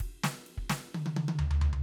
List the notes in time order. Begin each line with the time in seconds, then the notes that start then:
0.00 kick, ride
0.24 snare, ride
0.46 ride
0.58 kick
0.70 snare, ride
0.95 high tom
1.06 high tom
1.17 high tom
1.28 high tom
1.39 floor tom
1.51 floor tom
1.61 floor tom
1.73 floor tom